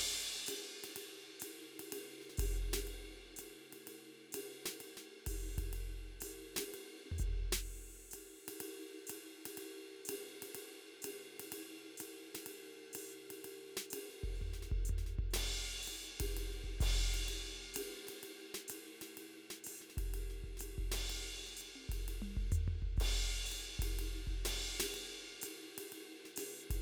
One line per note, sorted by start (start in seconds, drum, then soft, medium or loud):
0.35 snare soft
0.46 hi-hat pedal loud
0.46 ride medium
0.84 snare soft
0.84 ride medium
0.92 hi-hat pedal soft
0.96 ride medium
1.40 hi-hat pedal medium
1.40 ride medium
1.79 ride medium
1.87 hi-hat pedal soft
1.92 ride medium
2.21 snare soft
2.29 snare soft
2.37 kick soft
2.37 hi-hat pedal medium
2.37 ride medium
2.73 snare medium
2.73 ride loud
2.85 hi-hat pedal soft
2.85 ride soft
3.36 hi-hat pedal medium
3.36 ride medium
3.73 ride medium
3.85 hi-hat pedal soft
3.85 ride medium
4.32 hi-hat pedal medium
4.32 ride loud
4.65 snare medium
4.65 ride medium
4.79 hi-hat pedal soft
4.79 ride medium
4.97 snare soft
5.26 kick soft
5.26 hi-hat pedal medium
5.26 ride medium
5.58 kick soft
5.58 ride medium
5.72 hi-hat pedal soft
5.72 ride medium
6.20 hi-hat pedal medium
6.20 ride medium
6.56 snare medium
6.56 ride loud
6.67 hi-hat pedal soft
6.74 ride medium
7.05 high tom soft
7.11 floor tom medium
7.18 kick soft
7.18 hi-hat pedal medium
7.52 snare medium
7.52 crash medium
7.63 hi-hat pedal soft
7.98 snare soft
8.11 hi-hat pedal medium
8.11 ride medium
8.48 snare soft
8.48 ride medium
8.59 hi-hat pedal soft
8.59 ride medium
9.07 hi-hat pedal medium
9.07 ride medium
9.45 snare soft
9.45 ride medium
9.57 ride medium
10.05 hi-hat pedal loud
10.05 ride loud
10.26 hi-hat pedal soft
10.42 ride medium
10.53 hi-hat pedal soft
10.53 ride medium
11.02 hi-hat pedal medium
11.02 ride medium
11.39 ride medium
11.47 hi-hat pedal soft
11.52 ride medium
11.97 hi-hat pedal medium
11.97 ride medium
12.35 snare soft
12.35 ride medium
12.44 hi-hat pedal soft
12.44 ride medium
12.93 hi-hat pedal medium
12.93 ride medium
13.30 ride medium
13.41 hi-hat pedal soft
13.41 ride medium
13.77 snare medium
13.90 hi-hat pedal medium
13.90 ride medium
14.10 snare soft
14.23 kick soft
14.35 hi-hat pedal soft
14.41 floor tom medium
14.53 snare soft
14.62 snare soft
14.71 kick soft
14.85 hi-hat pedal medium
14.89 floor tom medium
14.98 snare soft
15.06 snare soft
15.19 kick soft
15.31 snare medium
15.31 hi-hat pedal soft
15.35 ride medium
15.74 snare soft
15.83 hi-hat pedal medium
15.87 ride medium
16.06 snare soft
16.20 kick soft
16.20 ride loud
16.28 hi-hat pedal soft
16.37 ride medium
16.52 snare soft
16.64 kick soft
16.80 kick medium
16.80 hi-hat pedal medium
16.80 ride medium
17.14 ride medium
17.25 hi-hat pedal soft
17.25 ride medium
17.74 hi-hat pedal loud
17.74 ride loud
18.07 snare soft
18.07 ride medium
18.18 hi-hat pedal soft
18.23 ride medium
18.39 snare soft
18.54 snare medium
18.68 hi-hat pedal loud
18.68 ride medium
18.85 snare soft
19.01 snare soft
19.01 ride medium
19.14 hi-hat pedal soft
19.14 ride medium
19.33 snare soft
19.50 snare medium
19.64 hi-hat pedal loud
19.64 ride medium
19.81 snare soft
19.90 snare soft
19.97 kick soft
19.97 ride medium
20.08 hi-hat pedal soft
20.14 ride medium
20.30 snare soft
20.44 kick soft
20.57 snare soft
20.57 hi-hat pedal medium
20.57 ride medium
20.78 kick soft
20.91 snare medium
20.91 ride medium
21.03 hi-hat pedal soft
21.09 ride medium
21.28 snare soft
21.46 snare soft
21.57 hi-hat pedal medium
21.61 ride soft
21.75 high tom soft
21.89 kick soft
21.89 ride medium
22.00 hi-hat pedal soft
22.08 ride medium
22.22 mid tom medium
22.37 kick soft
22.52 floor tom medium
22.52 hi-hat pedal medium
22.68 floor tom medium
22.82 kick soft
22.97 kick medium
22.97 hi-hat pedal soft
22.97 ride medium
23.16 snare soft
23.46 hi-hat pedal medium
23.52 ride medium
23.66 snare soft
23.74 snare soft
23.79 kick soft
23.79 ride medium
23.91 hi-hat pedal soft
23.99 ride medium
24.15 snare soft
24.27 kick soft
24.45 snare medium
24.45 hi-hat pedal loud
24.45 ride medium
24.80 snare medium
24.80 ride loud
24.92 hi-hat pedal soft
24.92 ride medium
25.28 snare soft
25.41 hi-hat pedal loud
25.41 ride medium
25.78 ride medium
25.88 hi-hat pedal soft
25.92 ride medium
26.25 snare soft
26.36 snare soft
26.36 hi-hat pedal loud
26.36 ride medium
26.70 open hi-hat medium
26.70 kick soft
26.70 ride medium